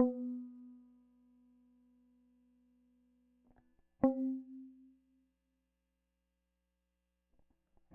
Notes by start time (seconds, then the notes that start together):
0.00 B3
4.04 C4